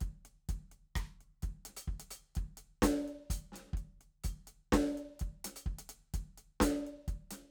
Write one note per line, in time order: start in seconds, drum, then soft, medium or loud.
0.01 kick medium
0.01 closed hi-hat medium
0.25 closed hi-hat soft
0.49 kick medium
0.49 closed hi-hat medium
0.72 closed hi-hat soft
0.96 kick medium
0.96 cross-stick medium
0.96 closed hi-hat medium
1.21 closed hi-hat soft
1.43 kick medium
1.43 closed hi-hat medium
1.65 snare soft
1.65 closed hi-hat medium
1.77 closed hi-hat medium
1.88 kick medium
2.00 closed hi-hat medium
2.11 closed hi-hat medium
2.36 kick medium
2.36 closed hi-hat medium
2.57 closed hi-hat medium
2.82 closed hi-hat loud
2.82 kick medium
2.82 snare loud
3.08 closed hi-hat soft
3.30 closed hi-hat medium
3.30 kick medium
3.52 snare soft
3.56 snare soft
3.56 closed hi-hat medium
3.59 snare soft
3.67 snare soft
3.70 kick medium
3.70 snare soft
3.77 closed hi-hat soft
4.01 closed hi-hat soft
4.24 closed hi-hat medium
4.24 kick medium
4.47 closed hi-hat medium
4.73 kick medium
4.73 snare loud
4.73 closed hi-hat medium
4.98 closed hi-hat soft
5.20 kick medium
5.20 closed hi-hat medium
5.45 snare soft
5.45 closed hi-hat loud
5.56 closed hi-hat medium
5.66 kick medium
5.79 closed hi-hat medium
5.89 closed hi-hat medium
6.14 kick medium
6.14 closed hi-hat medium
6.38 closed hi-hat medium
6.61 closed hi-hat loud
6.61 kick medium
6.61 snare loud
6.87 closed hi-hat soft
7.08 kick medium
7.08 closed hi-hat medium
7.31 snare soft
7.31 open hi-hat loud